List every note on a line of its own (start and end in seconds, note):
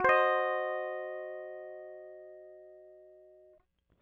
0.00 3.57 F#4
0.04 3.18 C5
0.09 3.60 D#5